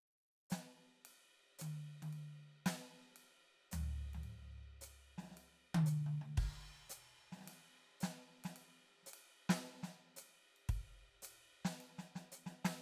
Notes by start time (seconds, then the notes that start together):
0.50 snare, hi-hat pedal, ride
1.05 ride
1.59 hi-hat pedal, high tom, ride
2.02 high tom, ride
2.13 ride
2.66 snare, hi-hat pedal, ride
3.16 ride
3.72 floor tom, hi-hat pedal, ride
4.14 floor tom, ride
4.81 hi-hat pedal, ride
5.18 snare
5.23 snare
5.27 snare
5.31 snare
5.37 ride
5.75 high tom
5.86 hi-hat pedal, ride
6.06 high tom
6.22 high tom
6.37 kick, crash
6.90 hi-hat pedal, ride
7.32 snare
7.37 snare
7.41 snare
7.44 snare
7.46 snare, ride
7.52 snare
8.01 snare, hi-hat pedal, ride
8.44 snare, ride
8.56 ride
9.03 snare, hi-hat pedal
9.14 ride
9.49 snare, ride
9.64 ride
9.83 snare
10.17 hi-hat pedal, ride
10.56 ride
10.69 kick, ride
11.22 hi-hat pedal, ride
11.65 snare
11.81 ride
11.99 snare
12.16 snare
12.32 hi-hat pedal, ride
12.46 snare
12.65 snare, ride